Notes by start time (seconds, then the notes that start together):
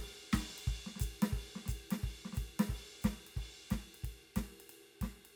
0.01 ride
0.33 kick, snare, hi-hat pedal, ride
0.58 ride
0.68 kick, ride
0.87 snare
0.96 snare
1.00 kick, hi-hat pedal, ride
1.23 snare, ride
1.33 kick, ride
1.56 snare
1.66 kick, snare, hi-hat pedal, ride
1.91 snare, ride
2.03 kick, ride
2.25 snare
2.33 snare, hi-hat pedal
2.38 kick, ride
2.60 snare, ride
2.70 kick, ride
3.02 kick, snare, hi-hat pedal, ride
3.27 ride
3.37 kick, ride
3.71 kick, snare, hi-hat pedal, ride
3.95 ride
4.04 kick, ride
4.36 kick, snare, hi-hat pedal, ride
4.61 ride
4.70 ride
5.02 kick, snare, ride
5.26 ride